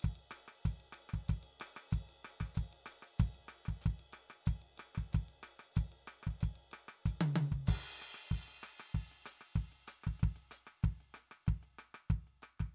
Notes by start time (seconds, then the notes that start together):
0.01 kick, hi-hat pedal, ride
0.16 ride
0.32 cross-stick, ride
0.49 cross-stick
0.66 kick, hi-hat pedal, ride
0.81 ride
0.93 cross-stick, ride
1.10 cross-stick
1.14 kick
1.29 kick, hi-hat pedal, ride
1.44 ride
1.61 cross-stick, ride
1.77 cross-stick
1.92 kick, hi-hat pedal, ride
2.10 ride
2.25 cross-stick, ride
2.41 kick, cross-stick
2.55 kick, hi-hat pedal, ride
2.74 ride
2.87 cross-stick, ride
3.03 cross-stick
3.19 kick, hi-hat pedal, ride
3.35 ride
3.49 cross-stick, ride
3.66 kick, cross-stick
3.82 hi-hat pedal, ride
3.87 kick
4.00 ride
4.13 cross-stick, ride
4.31 cross-stick
4.46 kick, hi-hat pedal, ride
4.63 ride
4.78 cross-stick, ride
4.96 kick, cross-stick
5.13 kick, hi-hat pedal, ride
5.29 ride
5.44 cross-stick, ride
5.60 cross-stick
5.76 kick, hi-hat pedal, ride
5.93 ride
6.08 cross-stick, ride
6.24 kick, cross-stick
6.41 kick, hi-hat pedal, ride
6.56 ride
6.72 cross-stick, ride
6.89 cross-stick
7.06 kick, hi-hat pedal, ride
7.22 high tom
7.36 high tom
7.53 kick
7.67 closed hi-hat, kick, hi-hat pedal, crash
8.00 cross-stick, open hi-hat
8.15 cross-stick
8.27 hi-hat pedal
8.32 kick, closed hi-hat
8.49 closed hi-hat
8.64 closed hi-hat, cross-stick
8.80 cross-stick
8.95 kick, closed hi-hat
9.12 closed hi-hat
9.26 closed hi-hat, cross-stick
9.42 cross-stick
9.56 kick, closed hi-hat
9.73 closed hi-hat
9.88 closed hi-hat, cross-stick
10.04 kick, cross-stick
10.20 kick, closed hi-hat
10.37 closed hi-hat
10.52 closed hi-hat, cross-stick
10.68 cross-stick
10.84 kick, closed hi-hat
11.01 closed hi-hat
11.15 cross-stick, closed hi-hat
11.32 cross-stick
11.47 kick, closed hi-hat
11.64 closed hi-hat
11.79 cross-stick, closed hi-hat
11.95 cross-stick
12.11 kick, closed hi-hat
12.28 closed hi-hat
12.43 cross-stick, closed hi-hat
12.60 kick, cross-stick